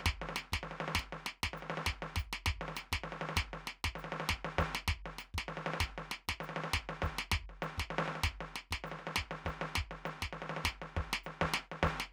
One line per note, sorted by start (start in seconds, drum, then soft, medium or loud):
0.01 snare soft
0.06 kick soft
0.06 snare loud
0.13 kick soft
0.22 snare soft
0.29 snare soft
0.36 snare medium
0.36 hi-hat pedal medium
0.53 kick soft
0.53 snare loud
0.64 snare soft
0.72 snare soft
0.81 snare medium
0.88 snare medium
0.95 kick soft
0.95 snare loud
0.95 hi-hat pedal soft
1.00 snare soft
1.13 snare soft
1.27 snare medium
1.44 kick soft
1.44 snare loud
1.54 snare soft
1.54 hi-hat pedal soft
1.63 snare soft
1.70 snare medium
1.78 snare medium
1.87 kick soft
1.87 snare loud
2.03 snare medium
2.16 kick soft
2.16 snare medium
2.16 hi-hat pedal medium
2.25 kick soft
2.33 snare medium
2.46 kick soft
2.46 snare loud
2.56 kick soft
2.62 snare medium
2.69 snare soft
2.77 snare medium
2.77 hi-hat pedal medium
2.93 kick soft
2.93 snare loud
3.04 snare soft
3.13 snare soft
3.22 snare medium
3.29 snare soft
3.37 kick soft
3.37 snare loud
3.37 hi-hat pedal medium
3.54 snare soft
3.68 snare medium
3.85 kick soft
3.85 snare loud
3.96 snare soft
3.96 hi-hat pedal soft
4.05 snare soft
4.13 snare medium
4.20 snare medium
4.29 kick soft
4.29 snare loud
4.45 snare medium
4.59 kick soft
4.59 snare medium
4.59 hi-hat pedal soft
4.75 snare loud
4.88 kick soft
4.88 snare loud
4.95 kick soft
5.06 snare soft
5.19 snare medium
5.19 hi-hat pedal medium
5.35 kick soft
5.35 snare medium
5.49 snare soft
5.58 snare soft
5.67 snare medium
5.74 snare medium
5.81 kick soft
5.81 snare loud
5.81 hi-hat pedal soft
5.98 snare soft
6.12 snare medium
6.29 kick soft
6.29 snare loud
6.41 snare soft
6.41 hi-hat pedal medium
6.50 snare soft
6.57 snare medium
6.64 snare medium
6.74 kick soft
6.74 snare loud
6.90 snare medium
7.03 kick soft
7.03 snare medium
7.03 hi-hat pedal soft
7.19 snare loud
7.32 kick soft
7.32 snare loud
7.39 kick soft
7.42 kick soft
7.50 snare soft
7.63 snare medium
7.63 hi-hat pedal soft
7.78 kick soft
7.78 snare medium
7.91 snare medium
7.99 snare medium
8.06 snare soft
8.08 snare medium
8.16 snare soft
8.24 kick soft
8.24 snare loud
8.24 hi-hat pedal soft
8.30 kick soft
8.41 snare soft
8.56 snare medium
8.71 kick soft
8.71 snare loud
8.84 snare soft
8.84 hi-hat pedal soft
8.92 snare soft
8.99 snare soft
9.07 snare medium
9.16 kick soft
9.16 snare loud
9.31 snare medium
9.46 kick soft
9.46 snare medium
9.46 hi-hat pedal soft
9.62 snare medium
9.76 kick soft
9.76 snare loud
9.91 snare soft
10.06 snare medium
10.06 hi-hat pedal soft
10.23 kick soft
10.23 snare medium
10.33 snare soft
10.42 snare soft
10.50 snare medium
10.57 snare medium
10.65 kick soft
10.65 snare loud
10.65 hi-hat pedal soft
10.82 snare soft
10.97 kick soft
10.97 snare medium
11.05 kick soft
11.14 snare loud
11.24 snare soft
11.24 hi-hat pedal soft
11.42 kick soft
11.42 snare medium
11.54 snare loud
11.72 snare soft
11.83 kick soft
11.83 snare loud
11.83 hi-hat pedal soft
12.00 snare medium